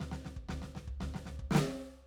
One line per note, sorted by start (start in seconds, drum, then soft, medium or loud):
0.00 snare soft
0.00 floor tom medium
0.11 snare soft
0.11 floor tom soft
0.25 snare soft
0.25 floor tom soft
0.36 kick soft
0.49 snare medium
0.49 floor tom medium
0.62 snare soft
0.62 floor tom soft
0.75 snare soft
0.75 floor tom soft
0.87 kick soft
1.00 snare soft
1.00 floor tom medium
1.14 snare soft
1.14 floor tom medium
1.26 snare soft
1.26 floor tom soft
1.39 kick soft
1.51 snare medium
1.55 snare loud